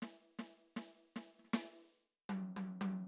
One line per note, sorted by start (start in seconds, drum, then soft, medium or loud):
0.02 snare medium
0.39 snare medium
0.76 snare medium
1.16 snare soft
1.39 snare soft
1.44 snare soft
1.54 snare medium
2.29 high tom medium
2.57 high tom medium
2.81 high tom loud